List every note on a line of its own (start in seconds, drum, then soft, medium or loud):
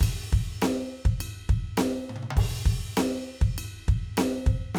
0.01 kick loud
0.01 ride bell loud
0.33 kick loud
0.62 snare loud
0.62 ride bell loud
1.05 kick loud
1.21 ride bell loud
1.50 kick loud
1.78 snare loud
1.78 ride bell loud
2.10 mid tom medium
2.16 high tom medium
2.23 mid tom medium
2.31 high tom loud
2.37 kick loud
2.37 crash loud
2.66 kick loud
2.97 snare loud
2.97 ride bell loud
3.42 kick loud
3.58 ride bell loud
3.89 kick loud
3.89 snare soft
4.18 snare loud
4.18 ride bell loud
4.47 kick loud
4.47 snare soft
4.75 snare loud